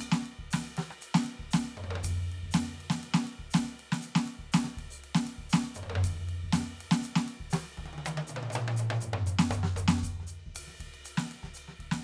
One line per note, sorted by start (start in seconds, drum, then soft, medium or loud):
0.01 hi-hat pedal medium
0.01 ride bell loud
0.13 snare loud
0.22 hi-hat pedal soft
0.27 ride medium
0.40 kick soft
0.51 snare loud
0.51 hi-hat pedal medium
0.51 ride loud
0.78 snare medium
0.78 ride medium
0.91 cross-stick medium
1.02 hi-hat pedal medium
1.02 ride medium
1.15 snare loud
1.23 hi-hat pedal medium
1.27 ride medium
1.40 kick soft
1.52 snare loud
1.52 hi-hat pedal medium
1.52 ride loud
1.70 hi-hat pedal soft
1.78 floor tom medium
1.85 floor tom medium
1.91 floor tom loud
1.96 floor tom loud
2.04 kick medium
2.04 hi-hat pedal loud
2.04 ride loud
2.10 kick soft
2.33 ride medium
2.44 kick soft
2.52 snare loud
2.52 hi-hat pedal loud
2.52 ride loud
2.81 ride medium
2.91 snare loud
2.98 hi-hat pedal soft
3.04 ride medium
3.15 snare loud
3.23 snare soft
3.28 ride medium
3.40 kick soft
3.47 kick soft
3.51 snare loud
3.51 hi-hat pedal medium
3.51 ride loud
3.73 hi-hat pedal soft
3.80 ride medium
3.93 snare loud
4.02 hi-hat pedal medium
4.02 ride medium
4.16 snare loud
4.25 hi-hat pedal soft
4.25 ride medium
4.40 kick soft
4.53 snare loud
4.53 hi-hat pedal medium
4.53 ride loud
4.65 snare soft
4.78 kick soft
4.78 ride medium
4.84 kick soft
4.91 open hi-hat medium
4.96 hi-hat pedal soft
5.05 ride medium
5.16 snare loud
5.28 ride medium
5.39 kick soft
5.44 kick soft
5.50 snare loud
5.50 hi-hat pedal loud
5.50 ride loud
5.75 floor tom medium
5.75 hi-hat pedal medium
5.84 floor tom medium
5.91 floor tom loud
5.96 floor tom loud
6.04 kick medium
6.04 hi-hat pedal loud
6.04 ride loud
6.11 kick soft
6.25 hi-hat pedal soft
6.30 ride medium
6.44 kick soft
6.53 snare loud
6.53 hi-hat pedal medium
6.53 ride loud
6.59 snare soft
6.76 hi-hat pedal soft
6.81 ride medium
6.92 snare loud
7.04 hi-hat pedal medium
7.04 ride medium
7.16 snare loud
7.29 ride medium
7.41 kick soft
7.49 kick soft
7.49 hi-hat pedal medium
7.54 snare loud
7.54 ride loud
7.78 kick soft
7.78 high tom medium
7.85 kick soft
7.85 high tom medium
7.94 high tom medium
7.99 high tom medium
8.06 hi-hat pedal loud
8.06 high tom loud
8.18 high tom loud
8.28 hi-hat pedal loud
8.28 mid tom medium
8.37 mid tom loud
8.44 mid tom medium
8.51 hi-hat pedal loud
8.51 mid tom medium
8.56 mid tom loud
8.69 mid tom loud
8.77 hi-hat pedal loud
8.77 mid tom medium
8.91 mid tom loud
9.01 floor tom medium
9.01 hi-hat pedal loud
9.14 floor tom loud
9.27 floor tom medium
9.27 hi-hat pedal loud
9.40 snare loud
9.51 kick soft
9.51 hi-hat pedal loud
9.51 floor tom loud
9.64 snare medium
9.76 kick soft
9.76 hi-hat pedal loud
9.76 floor tom medium
9.89 snare loud
9.96 snare soft
10.04 kick medium
10.04 hi-hat pedal loud
10.04 ride bell medium
10.16 kick soft
10.21 snare soft
10.28 snare soft
10.28 hi-hat pedal medium
10.28 ride soft
10.47 kick soft
10.56 hi-hat pedal loud
10.56 ride loud
10.68 snare soft
10.72 snare soft
10.76 snare soft
10.76 hi-hat pedal soft
10.81 kick soft
10.81 ride medium
10.95 ride bell medium
11.06 hi-hat pedal loud
11.06 ride medium
11.18 snare loud
11.28 hi-hat pedal soft
11.32 ride medium
11.44 kick soft
11.44 snare soft
11.55 hi-hat pedal medium
11.55 ride bell medium
11.69 snare soft
11.76 hi-hat pedal soft
11.80 kick soft
11.80 ride soft
11.92 snare loud